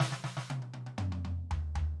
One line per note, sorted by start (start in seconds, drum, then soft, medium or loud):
0.00 snare loud
0.12 snare medium
0.24 snare medium
0.37 snare medium
0.50 high tom loud
0.62 high tom medium
0.74 high tom loud
0.87 high tom medium
0.98 mid tom loud
1.12 mid tom loud
1.25 mid tom loud
1.51 floor tom loud
1.76 floor tom loud